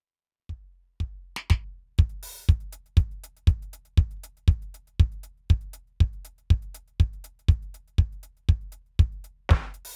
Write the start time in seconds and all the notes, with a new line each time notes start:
0.50 kick
1.00 kick
1.37 snare
1.50 kick, snare
1.98 kick, closed hi-hat
2.10 closed hi-hat
2.23 open hi-hat
2.44 hi-hat pedal
2.49 kick, closed hi-hat
2.61 closed hi-hat
2.73 closed hi-hat
2.86 closed hi-hat
2.97 kick, closed hi-hat
3.12 closed hi-hat
3.24 closed hi-hat
3.37 closed hi-hat
3.48 kick, closed hi-hat
3.63 closed hi-hat
3.73 closed hi-hat
3.85 closed hi-hat
3.98 closed hi-hat, kick
4.11 closed hi-hat
4.17 kick
4.24 closed hi-hat
4.37 closed hi-hat
4.48 kick, closed hi-hat
4.62 closed hi-hat
4.74 closed hi-hat
4.88 closed hi-hat
5.00 kick, closed hi-hat
5.12 closed hi-hat
5.24 closed hi-hat
5.38 closed hi-hat
5.50 kick, closed hi-hat
5.61 closed hi-hat
5.74 closed hi-hat
5.88 closed hi-hat
6.01 kick, closed hi-hat
6.13 closed hi-hat
6.25 closed hi-hat
6.38 closed hi-hat
6.51 kick, closed hi-hat
6.62 closed hi-hat
6.75 closed hi-hat
6.88 closed hi-hat
7.00 kick, closed hi-hat
7.13 closed hi-hat
7.24 closed hi-hat
7.39 closed hi-hat
7.49 kick, closed hi-hat
7.63 closed hi-hat
7.74 closed hi-hat
7.88 closed hi-hat
7.99 kick, closed hi-hat
8.13 closed hi-hat
8.23 closed hi-hat
8.37 closed hi-hat
8.49 closed hi-hat, kick
8.61 closed hi-hat
8.72 closed hi-hat
8.86 closed hi-hat
8.99 kick, closed hi-hat
9.12 closed hi-hat
9.24 closed hi-hat
9.49 kick, snare
9.71 closed hi-hat, kick
9.85 open hi-hat